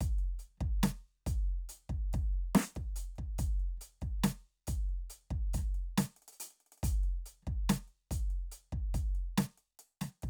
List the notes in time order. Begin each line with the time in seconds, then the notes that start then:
0.01 closed hi-hat, kick
0.18 closed hi-hat
0.39 closed hi-hat
0.57 kick, snare
0.62 closed hi-hat
0.83 closed hi-hat, snare
1.26 closed hi-hat, kick
1.47 closed hi-hat
1.69 closed hi-hat
1.89 kick, closed hi-hat
2.13 kick, closed hi-hat
2.33 closed hi-hat
2.55 closed hi-hat, snare
2.75 kick, closed hi-hat
2.96 closed hi-hat
3.16 kick, closed hi-hat
3.38 closed hi-hat, kick
3.60 closed hi-hat
3.77 closed hi-hat, snare
4.01 kick, closed hi-hat
4.24 closed hi-hat, snare
4.67 closed hi-hat, kick
4.89 closed hi-hat
5.10 closed hi-hat
5.30 kick, closed hi-hat
5.53 closed hi-hat, kick
5.57 snare
5.65 kick
5.74 closed hi-hat
5.98 closed hi-hat, snare
6.16 closed hi-hat
6.22 closed hi-hat
6.28 closed hi-hat
6.32 closed hi-hat
6.40 closed hi-hat
6.51 closed hi-hat
6.60 closed hi-hat
6.66 closed hi-hat
6.72 closed hi-hat
6.78 closed hi-hat
6.83 closed hi-hat, kick
7.03 closed hi-hat
7.26 closed hi-hat
7.42 snare
7.47 kick, closed hi-hat
7.69 closed hi-hat, snare
7.88 closed hi-hat
8.11 closed hi-hat, kick
8.30 closed hi-hat
8.52 closed hi-hat
8.72 kick
8.94 closed hi-hat, kick
9.15 closed hi-hat
9.38 closed hi-hat, snare
9.58 closed hi-hat
9.79 closed hi-hat
10.01 closed hi-hat, snare
10.22 kick, closed hi-hat